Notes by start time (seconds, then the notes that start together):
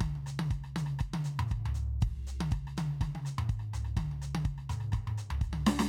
0.01 kick, cross-stick, hi-hat pedal, high tom
0.16 high tom
0.20 high tom
0.27 cross-stick, hi-hat pedal
0.40 high tom
0.51 kick, cross-stick, hi-hat pedal
0.64 cross-stick
0.77 hi-hat pedal, high tom
0.87 cross-stick
0.99 kick, cross-stick, hi-hat pedal
1.14 high tom
1.25 cross-stick, hi-hat pedal
1.40 mid tom
1.49 kick, cross-stick, hi-hat pedal
1.66 floor tom
1.75 cross-stick, hi-hat pedal
2.01 kick, hi-hat pedal, ride
2.28 hi-hat pedal
2.41 high tom
2.51 kick, cross-stick, hi-hat pedal
2.68 cross-stick
2.78 hi-hat pedal, high tom
2.91 cross-stick
3.01 kick, cross-stick, hi-hat pedal, high tom
3.15 high tom
3.26 cross-stick, hi-hat pedal
3.39 mid tom
3.50 kick, hi-hat pedal
3.60 cross-stick
3.74 floor tom, hi-hat pedal
3.85 cross-stick
3.97 kick, cross-stick, hi-hat pedal, high tom
4.12 high tom
4.22 cross-stick, hi-hat pedal
4.35 high tom
4.45 kick, cross-stick, hi-hat pedal
4.59 cross-stick
4.70 hi-hat pedal, mid tom
4.81 cross-stick
4.93 kick, cross-stick, hi-hat pedal, mid tom
5.08 mid tom
5.18 cross-stick, hi-hat pedal
5.31 floor tom
5.42 kick, cross-stick, hi-hat pedal
5.53 high tom
5.67 snare, hi-hat pedal
5.80 snare